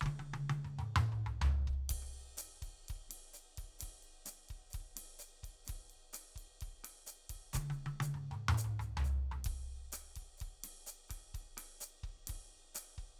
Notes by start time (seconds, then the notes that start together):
0.01 kick, high tom
0.06 kick, high tom
0.19 high tom
0.33 high tom
0.49 high tom
0.64 mid tom
0.79 mid tom
0.96 mid tom
1.12 floor tom
1.26 floor tom
1.41 floor tom
1.67 kick
1.73 kick
1.89 kick, ride
2.02 cross-stick
2.37 cross-stick, hi-hat pedal, ride
2.62 kick, ride
2.67 kick
2.88 kick, ride
2.95 kick
3.09 snare, ride
3.33 hi-hat pedal, ride
3.57 kick, ride
3.63 kick
3.79 kick, snare, hi-hat pedal, ride
3.87 kick
4.02 ride
4.25 snare, hi-hat pedal, ride
4.49 kick, ride
4.55 kick
4.70 hi-hat pedal, ride
4.74 kick
4.80 kick
4.96 snare, ride
5.19 hi-hat pedal, ride
5.43 kick, ride
5.48 kick
5.65 snare, hi-hat pedal, ride
5.69 kick
5.75 kick
5.90 ride
6.13 cross-stick, snare, hi-hat pedal, ride
6.36 kick, ride
6.61 kick, ride
6.67 kick
6.84 cross-stick, ride
7.06 hi-hat pedal, ride
7.29 kick, ride
7.35 kick
7.53 kick, hi-hat pedal, high tom
7.55 high tom
7.61 kick
7.70 hi-hat pedal, high tom
7.86 high tom
8.00 hi-hat pedal, high tom
8.14 mid tom
8.31 mid tom
8.48 mid tom
8.54 hi-hat pedal, mid tom
8.64 floor tom
8.79 floor tom, hi-hat pedal
8.97 floor tom
9.04 hi-hat pedal
9.31 floor tom
9.44 kick, ride
9.57 kick
9.92 cross-stick, hi-hat pedal, ride
10.16 kick, ride
10.21 kick
10.37 kick, hi-hat pedal, ride
10.47 kick
10.63 snare, ride
10.86 hi-hat pedal, ride
11.08 kick, cross-stick, hi-hat pedal, ride
11.15 kick
11.34 kick, ride
11.41 snare
11.57 cross-stick, snare, ride
11.80 hi-hat pedal
12.03 kick
12.09 kick
12.15 snare
12.27 kick, snare, ride
12.35 kick
12.75 cross-stick, snare, hi-hat pedal, ride
12.98 kick
13.03 kick